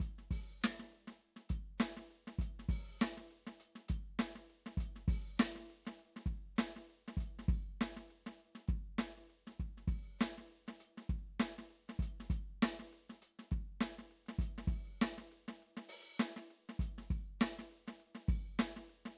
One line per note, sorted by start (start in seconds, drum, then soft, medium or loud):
0.01 closed hi-hat medium
0.01 kick soft
0.19 snare soft
0.32 open hi-hat medium
0.32 kick soft
0.62 closed hi-hat medium
0.62 snare loud
0.62 hi-hat pedal medium
0.80 snare soft
0.93 closed hi-hat soft
1.08 snare soft
1.08 closed hi-hat soft
1.22 closed hi-hat soft
1.37 snare soft
1.50 closed hi-hat medium
1.50 kick soft
1.79 closed hi-hat medium
1.79 snare loud
1.79 hi-hat pedal soft
1.98 snare soft
2.12 closed hi-hat soft
2.28 snare soft
2.28 closed hi-hat soft
2.40 closed hi-hat medium
2.40 kick medium
2.60 snare soft
2.70 open hi-hat medium
2.70 kick medium
3.01 closed hi-hat medium
3.01 snare loud
3.01 hi-hat pedal medium
3.18 snare soft
3.32 closed hi-hat soft
3.48 snare soft
3.48 closed hi-hat soft
3.61 closed hi-hat soft
3.76 snare soft
3.89 closed hi-hat medium
3.89 kick medium
4.20 closed hi-hat medium
4.20 snare medium
4.36 snare soft
4.51 closed hi-hat soft
4.67 snare soft
4.67 closed hi-hat soft
4.78 closed hi-hat medium
4.78 kick soft
4.97 snare soft
5.09 open hi-hat medium
5.09 kick medium
5.38 snare loud
5.38 hi-hat pedal medium
5.42 closed hi-hat loud
5.56 snare soft
5.71 closed hi-hat soft
5.86 snare medium
5.86 closed hi-hat soft
6.00 closed hi-hat soft
6.17 snare soft
6.27 kick soft
6.27 closed hi-hat soft
6.57 closed hi-hat medium
6.57 snare loud
6.57 hi-hat pedal soft
6.77 snare soft
6.91 closed hi-hat soft
7.07 snare soft
7.07 closed hi-hat soft
7.18 closed hi-hat soft
7.18 kick soft
7.40 snare soft
7.49 kick medium
7.49 open hi-hat medium
7.82 open hi-hat medium
7.82 snare medium
7.82 hi-hat pedal medium
7.97 snare soft
8.11 closed hi-hat soft
8.27 snare soft
8.27 closed hi-hat soft
8.40 closed hi-hat soft
8.56 snare soft
8.69 kick medium
8.69 closed hi-hat medium
8.99 closed hi-hat medium
8.99 snare medium
9.18 snare soft
9.30 closed hi-hat soft
9.48 snare soft
9.48 closed hi-hat soft
9.61 kick soft
9.61 closed hi-hat soft
9.78 snare soft
9.88 kick medium
9.88 open hi-hat medium
10.20 closed hi-hat loud
10.20 snare loud
10.20 hi-hat pedal medium
10.38 snare soft
10.52 closed hi-hat soft
10.68 snare soft
10.68 closed hi-hat soft
10.81 closed hi-hat medium
10.98 snare soft
11.10 kick medium
11.10 closed hi-hat medium
11.40 closed hi-hat medium
11.40 snare medium
11.59 snare soft
11.71 closed hi-hat soft
11.89 snare soft
11.89 closed hi-hat soft
12.00 closed hi-hat medium
12.00 kick medium
12.21 snare soft
12.31 closed hi-hat medium
12.31 kick medium
12.63 closed hi-hat loud
12.63 snare loud
12.63 hi-hat pedal medium
12.80 snare soft
12.94 closed hi-hat soft
13.10 snare soft
13.10 closed hi-hat soft
13.23 closed hi-hat soft
13.40 snare soft
13.52 kick medium
13.52 closed hi-hat medium
13.62 kick soft
13.81 closed hi-hat medium
13.81 snare medium
13.99 snare soft
14.12 closed hi-hat soft
14.27 snare soft
14.27 closed hi-hat soft
14.39 closed hi-hat medium
14.39 kick medium
14.59 snare soft
14.68 kick medium
14.68 open hi-hat medium
15.02 closed hi-hat medium
15.02 snare loud
15.02 hi-hat pedal medium
15.19 snare soft
15.32 closed hi-hat soft
15.49 snare medium
15.49 closed hi-hat soft
15.63 closed hi-hat soft
15.78 snare soft
15.90 open hi-hat loud
16.20 closed hi-hat medium
16.20 snare medium
16.20 hi-hat pedal medium
16.37 snare soft
16.51 closed hi-hat soft
16.69 snare soft
16.69 closed hi-hat soft
16.80 closed hi-hat medium
16.80 kick medium
16.99 snare soft
17.11 kick medium
17.11 open hi-hat medium
17.41 closed hi-hat medium
17.41 snare loud
17.41 hi-hat pedal medium
17.59 snare soft
17.72 closed hi-hat soft
17.88 snare soft
17.88 closed hi-hat soft
18.01 closed hi-hat soft
18.16 snare soft
18.29 kick medium
18.29 open hi-hat medium
18.59 closed hi-hat medium
18.59 snare loud
18.59 hi-hat pedal medium
18.77 snare soft
18.90 closed hi-hat soft
19.06 snare soft